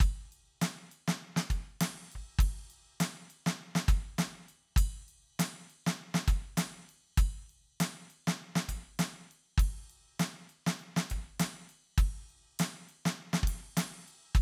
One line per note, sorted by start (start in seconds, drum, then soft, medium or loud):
0.01 kick loud
0.01 ride bell medium
0.33 ride bell soft
0.62 snare loud
0.62 ride bell medium
0.92 ride bell soft
1.08 snare loud
1.37 snare loud
1.51 kick medium
1.51 ride bell soft
1.81 snare loud
1.81 ride loud
2.12 kick soft
2.12 ride bell soft
2.39 kick loud
2.39 ride medium
2.71 ride bell soft
3.01 snare loud
3.01 ride bell medium
3.31 ride bell soft
3.47 snare loud
3.76 snare loud
3.89 kick loud
3.89 ride bell medium
4.19 snare loud
4.19 ride bell medium
4.49 ride bell soft
4.77 kick loud
4.77 ride bell loud
5.09 ride bell soft
5.40 snare loud
5.40 ride bell loud
5.70 ride bell soft
5.87 snare loud
6.15 snare loud
6.28 kick loud
6.28 ride bell medium
6.58 snare loud
6.58 ride bell medium
6.90 ride soft
7.18 kick loud
7.18 ride bell medium
7.50 ride soft
7.81 snare loud
7.81 ride bell medium
8.11 ride bell soft
8.28 snare loud
8.56 snare loud
8.69 kick medium
8.69 ride bell medium
9.00 snare loud
9.00 ride bell medium
9.32 ride soft
9.58 kick loud
9.58 ride medium
9.90 ride soft
10.20 snare loud
10.20 ride bell medium
10.50 ride bell soft
10.67 snare loud
10.80 ride soft
10.97 snare loud
11.11 kick medium
11.11 ride bell medium
11.40 snare loud
11.40 ride bell medium
11.70 ride bell soft
11.98 kick loud
11.98 ride medium
12.30 ride soft
12.60 snare loud
12.60 ride bell medium
12.89 ride bell soft
13.06 snare loud
13.34 snare loud
13.44 kick loud
13.48 ride loud
13.78 snare loud
13.78 ride loud
14.08 ride bell soft
14.36 kick loud
14.36 ride bell medium